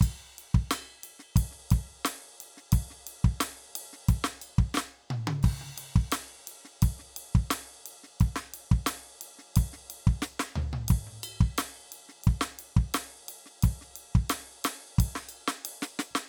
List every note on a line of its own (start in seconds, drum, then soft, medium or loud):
0.01 kick loud
0.01 ride bell medium
0.38 ride medium
0.55 kick loud
0.71 snare loud
0.71 ride bell loud
1.04 ride medium
1.19 snare soft
1.36 kick loud
1.36 ride loud
1.51 snare soft
1.60 snare soft
1.71 kick loud
1.71 ride loud
2.05 snare loud
2.05 ride loud
2.40 ride medium
2.57 snare soft
2.72 kick loud
2.72 ride loud
2.91 snare soft
3.07 ride medium
3.24 kick loud
3.41 snare loud
3.41 ride loud
3.76 ride loud
3.93 snare soft
4.09 kick loud
4.09 ride medium
4.24 snare loud
4.42 ride bell medium
4.59 kick loud
4.70 kick soft
4.74 snare loud
4.77 snare loud
5.11 mid tom loud
5.27 high tom loud
5.43 kick loud
5.43 crash medium
5.61 high tom soft
5.78 ride loud
5.96 kick loud
6.12 snare loud
6.12 ride loud
6.47 ride medium
6.65 snare soft
6.82 kick loud
6.82 ride loud
6.99 snare soft
7.17 ride loud
7.35 kick loud
7.51 snare loud
7.51 ride loud
7.86 ride medium
8.04 snare soft
8.20 kick loud
8.20 ride medium
8.36 snare loud
8.54 ride medium
8.72 kick loud
8.87 snare loud
8.87 ride loud
9.21 ride medium
9.39 snare soft
9.56 kick loud
9.56 ride loud
9.73 snare soft
9.90 ride medium
10.07 kick loud
10.22 snare loud
10.40 snare loud
10.56 floor tom loud
10.73 mid tom loud
10.88 kick loud
10.88 ride loud
11.07 mid tom soft
11.23 ride bell loud
11.41 kick loud
11.58 snare loud
11.58 ride loud
11.92 ride medium
12.09 snare soft
12.24 kick loud
12.24 ride medium
12.41 snare loud
12.59 ride medium
12.77 kick loud
12.94 snare loud
12.94 ride loud
13.29 ride loud
13.46 snare soft
13.63 kick loud
13.63 ride loud
13.81 snare soft
13.96 ride medium
14.15 kick loud
14.15 snare soft
14.30 snare loud
14.30 ride loud
14.64 snare loud
14.64 ride loud
14.99 kick loud
14.99 ride loud
15.16 snare medium
15.29 ride bell medium
15.48 snare loud
15.65 ride loud
15.82 snare loud
15.99 snare loud
16.11 kick soft
16.15 snare loud